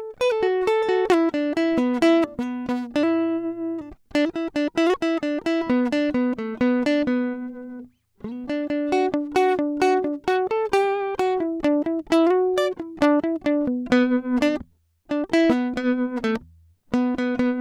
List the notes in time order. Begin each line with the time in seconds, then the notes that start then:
0.01 A4
0.23 B4
0.33 A4
0.44 F#4
0.69 A4
0.90 F#4
1.11 E4
1.36 D4
1.58 E4
1.79 B3
2.04 E4
2.41 B3
2.71 B3
2.97 D4
3.09 E4
3.80 D4
4.16 D4
4.37 E4
4.57 D4
4.79 E4
5.04 E4
5.24 D4
5.48 E4
5.71 B3
5.94 D4
6.16 B3
6.40 A3
6.63 B3
6.88 D4
7.09 B3
8.26 B3
8.51 D4
8.72 D4
8.94 F#4
9.15 D4
9.37 F#4
9.60 D4
9.83 F#4
10.06 D4
10.29 F#4
10.53 A4
10.75 G4
11.21 F#4
11.42 E4
11.66 D4
11.88 E4
12.14 E4
12.28 F#4
12.59 D5
12.82 E4
13.04 D4
13.25 E4
13.48 D4
13.69 B3
13.93 B3
14.44 D4
15.13 D4
15.35 E4
15.51 B3
15.79 B3
16.25 A3
16.95 B3
17.20 B3
17.41 B3